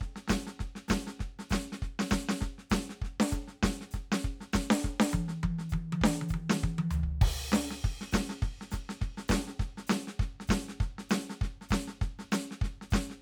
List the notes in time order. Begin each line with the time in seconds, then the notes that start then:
0.01 kick, snare
0.16 snare
0.28 snare, hi-hat pedal
0.30 kick, snare
0.47 snare
0.59 kick, snare
0.76 snare
0.88 kick, snare, hi-hat pedal
0.90 snare
1.07 snare
1.20 kick, snare
1.39 snare
1.50 kick, snare, hi-hat pedal
1.53 snare
1.72 snare
1.82 kick, snare
1.99 snare
2.10 kick, snare, hi-hat pedal
2.29 snare
2.41 kick, snare
2.58 snare
2.70 kick, snare, hi-hat pedal
2.90 snare
3.02 kick, snare
3.20 snare
3.31 kick, snare, hi-hat pedal
3.48 snare
3.63 kick, snare
3.81 snare
3.91 kick, snare, hi-hat pedal
4.12 snare
4.24 kick, snare
4.41 snare
4.53 kick, snare, hi-hat pedal
4.71 snare
4.84 kick, snare
5.00 snare
5.11 kick, hi-hat pedal, high tom
5.28 snare
5.43 kick, high tom
5.59 snare
5.70 kick, hi-hat pedal
5.74 high tom
5.93 high tom
6.02 kick, snare
6.21 high tom
6.29 kick, hi-hat pedal
6.34 high tom
6.50 snare
6.64 kick, high tom
6.79 high tom
6.91 floor tom, hi-hat pedal
7.04 kick
7.21 kick, crash
7.52 snare, hi-hat pedal
7.71 snare
7.84 kick, snare
8.01 snare
8.12 kick, snare, hi-hat pedal
8.29 snare
8.42 kick, snare
8.61 snare
8.71 kick, snare, hi-hat pedal
8.89 snare
9.01 kick, snare
9.18 snare
9.28 kick, snare, hi-hat pedal
9.31 snare
9.48 snare
9.60 kick, snare
9.78 snare
9.87 snare, hi-hat pedal
10.08 snare
10.20 kick, snare
10.40 snare
10.48 kick, hi-hat pedal
10.69 snare
10.80 kick, snare
10.98 snare
11.10 snare, hi-hat pedal
11.30 snare
11.41 kick, snare
11.61 snare
11.69 kick, snare, hi-hat pedal
11.88 snare
12.02 kick, snare
12.19 snare
12.25 kick
12.32 snare, hi-hat pedal
12.51 snare
12.62 kick, snare
12.81 snare
12.91 kick, snare, hi-hat pedal
13.10 snare